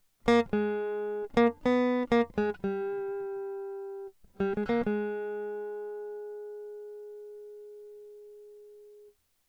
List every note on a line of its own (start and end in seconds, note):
0.29 0.50 A#3
0.55 1.30 G#3
1.38 1.55 A#3
1.67 2.08 B3
2.13 2.31 A#3
2.39 2.55 G#3
2.65 4.14 G3
4.42 4.56 G3
4.71 4.87 A#3
4.88 8.86 G#3